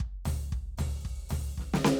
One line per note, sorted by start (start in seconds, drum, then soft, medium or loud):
0.00 kick medium
0.25 open hi-hat medium
0.25 floor tom loud
0.52 kick medium
0.78 open hi-hat medium
0.78 floor tom loud
1.05 kick medium
1.29 open hi-hat medium
1.29 floor tom loud
1.57 kick medium
1.57 snare soft
1.74 snare loud
1.80 hi-hat pedal soft
1.85 snare loud